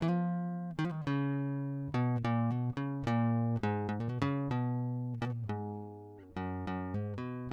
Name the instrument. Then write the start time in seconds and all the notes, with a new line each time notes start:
acoustic guitar
0.03 F3
0.80 D#3
0.91 D#3
1.03 C#3
1.11 C#3
1.95 B2
2.26 A#2
2.52 B2
2.78 C#3
3.08 A#2
3.64 G#2
3.90 G#2
4.01 A#2
4.11 B2
4.22 C#3
4.52 B2
5.23 B2
5.32 A#2
5.50 G#2
6.38 F#2
6.69 F#2
6.96 G#2
7.19 B2
7.26 B2